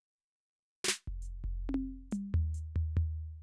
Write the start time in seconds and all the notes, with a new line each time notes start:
0.84 snare
0.88 snare
1.07 kick
1.22 hi-hat pedal
1.44 kick
1.69 high tom
1.74 high tom
2.11 hi-hat pedal, mid tom
2.34 floor tom
2.54 hi-hat pedal
2.76 floor tom
2.97 floor tom